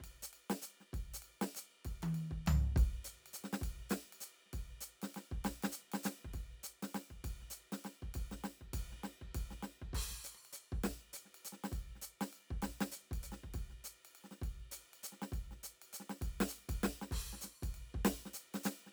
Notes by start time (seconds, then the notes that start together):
0.01 kick, ride
0.23 hi-hat pedal
0.34 ride
0.51 snare, ride
0.62 hi-hat pedal, ride
0.81 snare
0.94 kick, ride
1.14 hi-hat pedal
1.23 ride
1.42 snare, ride
1.56 hi-hat pedal, ride
1.85 kick, ride
2.03 high tom, ride
2.15 ride
2.32 kick
2.47 floor tom, ride
2.77 kick, ride
3.05 hi-hat pedal, ride
3.27 ride
3.34 hi-hat pedal, ride
3.45 snare
3.54 snare
3.62 kick, ride
3.90 snare, hi-hat pedal, ride
4.13 ride
4.21 hi-hat pedal, ride
4.46 snare
4.54 kick, ride
4.81 hi-hat pedal, ride
5.03 snare, ride
5.15 snare, ride
5.32 kick
5.45 snare, ride
5.63 snare, ride
5.73 hi-hat pedal
5.92 snare, ride
6.04 snare, hi-hat pedal, ride
6.25 kick
6.34 kick, ride
6.64 hi-hat pedal, ride
6.83 snare, ride
6.95 snare, ride
7.11 kick
7.25 kick, ride
7.41 snare
7.51 hi-hat pedal
7.55 ride
7.73 snare, ride
7.85 snare, ride
8.03 kick
8.15 kick, ride
8.32 snare
8.45 snare
8.62 kick
8.74 kick, ride
8.92 snare
9.04 snare
9.22 kick
9.35 kick, ride
9.51 snare
9.63 snare
9.82 kick
9.94 kick, crash
10.11 snare
10.25 hi-hat pedal, ride
10.35 cross-stick
10.46 ride
10.53 hi-hat pedal, ride
10.73 kick
10.84 snare, ride
11.14 hi-hat pedal, ride
11.26 snare
11.35 ride
11.46 hi-hat pedal, ride
11.53 snare
11.64 snare
11.72 kick, ride
11.96 snare
12.02 hi-hat pedal, ride
12.22 snare, ride
12.33 ride
12.51 kick
12.63 snare, ride
12.81 snare
12.92 hi-hat pedal, ride
13.12 kick, ride
13.24 hi-hat pedal, ride
13.33 snare
13.44 kick
13.54 kick, ride
13.71 snare
13.85 hi-hat pedal, ride
14.06 ride
14.25 snare
14.32 snare
14.42 kick, ride
14.72 hi-hat pedal, ride
14.94 ride
15.04 hi-hat pedal, ride
15.13 snare
15.22 snare
15.33 kick, ride
15.52 snare
15.64 hi-hat pedal, ride
15.82 ride
15.94 hi-hat pedal, ride
16.01 snare
16.10 snare
16.22 kick, ride
16.41 snare
16.49 hi-hat pedal
16.53 ride
16.69 kick, ride
16.84 snare
17.02 snare
17.12 kick, crash
17.33 snare
17.42 snare, hi-hat pedal
17.63 kick, ride
17.75 ride
17.95 kick
18.05 snare, ride
18.26 snare
18.34 hi-hat pedal, ride
18.55 snare, ride
18.64 snare, hi-hat pedal, ride
18.87 snare